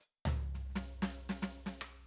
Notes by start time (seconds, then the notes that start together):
0.00 hi-hat pedal
0.25 floor tom
0.55 snare
0.61 snare
0.65 snare
0.69 snare
0.75 snare
1.02 snare
1.29 snare
1.42 snare
1.66 snare
1.81 cross-stick